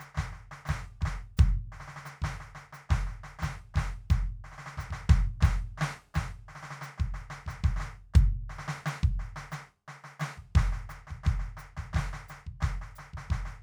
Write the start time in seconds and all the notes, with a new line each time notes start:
0.01 snare, hi-hat pedal
0.16 kick, snare
0.19 snare
0.34 snare
0.53 snare
0.67 kick, snare, hi-hat pedal
0.71 snare
1.02 kick, snare
1.07 snare
1.39 kick, snare, hi-hat pedal
1.74 snare
1.81 snare
1.89 snare
1.98 snare
2.07 snare, hi-hat pedal
2.23 kick, snare
2.42 snare
2.57 snare
2.74 snare, hi-hat pedal
2.91 kick, snare
3.08 snare
3.25 snare
3.40 kick, snare, hi-hat pedal
3.44 snare
3.76 kick, snare
3.79 snare
4.12 kick, snare, hi-hat pedal
4.46 snare
4.53 snare
4.60 snare
4.68 snare
4.79 kick, snare, hi-hat pedal
4.92 kick, snare
5.11 kick, snare
5.42 kick, snare
5.45 snare, hi-hat pedal
5.79 snare
5.83 snare
6.16 kick, snare, hi-hat pedal
6.50 snare
6.57 snare
6.64 snare
6.72 snare
6.83 snare, hi-hat pedal
6.99 kick, snare
7.16 snare
7.32 snare
7.48 kick, snare, hi-hat pedal
7.65 kick, snare
7.78 kick, snare
7.82 snare
8.15 kick, snare, hi-hat pedal
8.51 snare
8.60 snare
8.69 snare
8.87 snare, hi-hat pedal
9.05 kick
9.21 snare
9.38 snare
9.53 snare, hi-hat pedal
9.90 snare
10.05 snare
10.21 snare, hi-hat pedal
10.39 kick
10.57 kick, snare
10.59 snare
10.74 snare
10.91 snare, hi-hat pedal
11.09 kick, snare
11.25 kick, snare
11.41 snare
11.59 snare, hi-hat pedal
11.78 kick, snare
11.95 kick, snare
11.98 snare
12.15 snare
12.30 snare, hi-hat pedal
12.48 kick
12.62 kick, snare
12.83 snare
12.97 snare, hi-hat pedal
13.15 kick, snare
13.32 kick, snare
13.47 snare